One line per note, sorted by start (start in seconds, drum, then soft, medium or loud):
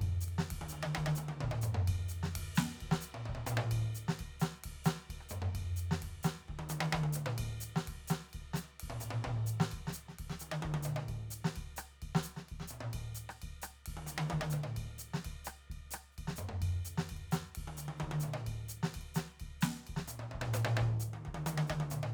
0.01 kick soft
0.01 ride bell medium
0.08 kick soft
0.21 hi-hat pedal medium
0.28 ride soft
0.38 snare medium
0.51 kick soft
0.51 ride medium
0.61 kick soft
0.61 high tom medium
0.69 hi-hat pedal medium
0.73 high tom medium
0.83 high tom medium
0.95 kick soft
0.95 high tom loud
1.04 kick soft
1.04 high tom loud
1.15 hi-hat pedal medium
1.15 high tom medium
1.29 high tom medium
1.41 kick soft
1.41 mid tom loud
1.51 mid tom medium
1.62 floor tom medium
1.62 hi-hat pedal medium
1.75 floor tom loud
1.88 kick soft
1.88 ride bell medium
1.95 kick soft
1.98 kick soft
2.09 hi-hat pedal medium
2.09 ride soft
2.23 snare medium
2.35 kick soft
2.35 ride loud
2.43 kick soft
2.55 snare loud
2.55 hi-hat pedal medium
2.81 kick soft
2.81 ride bell soft
2.91 snare medium
3.01 hi-hat pedal medium
3.01 ride soft
3.14 mid tom medium
3.26 kick soft
3.26 mid tom medium
3.35 kick soft
3.35 mid tom medium
3.46 hi-hat pedal medium
3.46 mid tom loud
3.57 mid tom loud
3.71 kick soft
3.71 ride bell medium
3.80 kick soft
3.94 hi-hat pedal medium
3.94 ride soft
4.08 snare medium
4.19 kick soft
4.19 ride bell medium
4.40 snare medium
4.40 hi-hat pedal medium
4.64 kick soft
4.64 ride medium
4.84 snare loud
4.84 hi-hat pedal medium
5.10 kick soft
5.10 ride bell medium
5.21 cross-stick soft
5.29 floor tom medium
5.29 hi-hat pedal medium
5.42 floor tom medium
5.55 kick soft
5.55 ride bell medium
5.62 kick soft
5.76 hi-hat pedal medium
5.76 ride soft
5.91 snare medium
6.02 kick soft
6.02 ride medium
6.23 snare medium
6.23 hi-hat pedal medium
6.48 kick soft
6.48 high tom soft
6.59 high tom medium
6.69 hi-hat pedal loud
6.69 high tom medium
6.81 high tom loud
6.89 hi-hat pedal soft
6.93 kick soft
6.93 high tom loud
7.04 high tom medium
7.13 hi-hat pedal loud
7.13 mid tom soft
7.26 mid tom loud
7.38 kick soft
7.38 ride bell medium
7.48 kick soft
7.60 hi-hat pedal loud
7.60 ride soft
7.76 snare medium
7.81 hi-hat pedal soft
7.87 kick soft
7.87 ride medium
8.08 snare medium
8.08 hi-hat pedal loud
8.29 hi-hat pedal soft
8.33 kick soft
8.33 ride bell medium
8.54 snare medium
8.54 hi-hat pedal medium
8.80 kick soft
8.80 ride medium
8.90 mid tom medium
9.00 hi-hat pedal medium
9.00 mid tom medium
9.11 mid tom loud
9.24 kick soft
9.24 mid tom loud
9.46 hi-hat pedal medium
9.60 snare medium
9.72 kick soft
9.72 ride bell medium
9.87 snare medium
9.93 hi-hat pedal medium
10.09 snare soft
10.19 kick soft
10.19 ride medium
10.30 snare medium
10.40 hi-hat pedal medium
10.40 high tom medium
10.52 high tom medium
10.62 kick soft
10.62 high tom loud
10.72 kick soft
10.72 high tom loud
10.83 hi-hat pedal medium
10.83 mid tom medium
10.96 mid tom medium
11.09 kick soft
11.09 ride bell soft
11.31 hi-hat pedal loud
11.31 ride soft
11.45 snare medium
11.56 kick soft
11.56 ride bell medium
11.76 cross-stick medium
11.76 hi-hat pedal medium
12.02 kick soft
12.02 ride bell soft
12.15 snare medium
12.23 hi-hat pedal medium
12.23 ride soft
12.37 snare soft
12.49 kick soft
12.49 ride bell soft
12.60 snare soft
12.68 hi-hat pedal medium
12.68 mid tom medium
12.81 mid tom medium
12.93 kick soft
12.93 ride bell medium
13.00 kick soft
13.15 hi-hat pedal medium
13.15 ride soft
13.29 cross-stick medium
13.42 kick soft
13.42 ride bell medium
13.62 cross-stick medium
13.62 hi-hat pedal medium
13.86 kick soft
13.86 ride medium
13.94 kick soft
13.94 high tom medium
14.07 hi-hat pedal medium
14.07 high tom medium
14.18 high tom loud
14.27 hi-hat pedal soft
14.27 high tom loud
14.33 kick soft
14.39 kick soft
14.39 high tom loud
14.50 hi-hat pedal medium
14.50 mid tom medium
14.64 mid tom medium
14.77 kick soft
14.77 ride bell medium
14.98 hi-hat pedal medium
14.98 ride soft
15.14 snare medium
15.25 kick soft
15.25 ride bell medium
15.45 cross-stick medium
15.45 hi-hat pedal medium
15.70 kick soft
15.70 ride bell soft
15.91 cross-stick medium
15.91 hi-hat pedal loud
16.12 hi-hat pedal soft
16.18 kick soft
16.18 ride bell soft
16.27 snare medium
16.36 floor tom medium
16.36 hi-hat pedal medium
16.49 floor tom medium
16.61 kick soft
16.61 ride bell medium
16.68 kick soft
16.85 hi-hat pedal medium
16.85 ride soft
16.98 snare medium
17.09 kick soft
17.09 ride bell medium
17.17 ride soft
17.31 snare medium
17.31 hi-hat pedal medium
17.55 kick soft
17.55 ride medium
17.65 kick soft
17.65 high tom medium
17.77 hi-hat pedal medium
17.77 high tom soft
17.88 high tom medium
17.97 hi-hat pedal soft
17.97 high tom loud
18.03 kick soft
18.11 high tom loud
18.20 hi-hat pedal medium
18.20 mid tom medium
18.34 mid tom medium
18.47 kick soft
18.47 ride bell medium
18.69 hi-hat pedal medium
18.83 snare medium
18.94 kick soft
18.94 ride bell medium
19.01 ride soft
19.14 snare medium
19.14 hi-hat pedal medium
19.40 kick soft
19.40 ride bell soft
19.61 snare medium
19.61 hi-hat pedal medium
19.87 kick soft
19.87 ride bell soft
19.97 snare medium
20.08 hi-hat pedal loud
20.08 mid tom medium
20.19 mid tom medium
20.31 kick soft
20.31 mid tom medium
20.41 mid tom loud
20.54 hi-hat pedal medium
20.54 mid tom medium
20.60 ride soft
20.65 mid tom loud
20.77 mid tom loud
20.81 kick soft
20.88 kick soft
21.00 hi-hat pedal medium
21.00 high tom soft
21.13 high tom medium
21.25 kick soft
21.25 high tom medium
21.35 kick soft
21.35 high tom medium
21.46 hi-hat pedal medium
21.46 high tom loud
21.58 high tom loud
21.67 kick soft
21.67 hi-hat pedal soft
21.67 high tom loud
21.80 high tom medium
21.90 hi-hat pedal medium
21.90 mid tom medium
22.03 mid tom medium